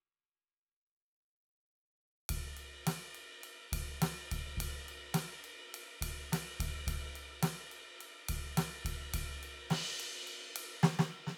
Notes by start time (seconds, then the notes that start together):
2.29 kick, ride
2.57 ride
2.87 snare, ride
3.15 ride
3.43 ride
3.73 kick, ride
4.02 snare, ride
4.31 kick, ride
4.57 kick, ride
4.88 ride
5.14 snare, ride
5.44 ride
5.74 ride
6.01 kick, ride
6.32 snare, ride
6.60 kick, ride
6.87 kick, ride
7.15 ride
7.43 snare, ride
7.71 ride
8.01 ride
8.29 kick, ride
8.57 snare, ride
8.85 kick, ride
9.14 kick, ride
9.43 ride
9.70 snare, ride
10.00 ride
10.27 ride
10.56 ride
10.83 snare
10.99 snare
11.27 snare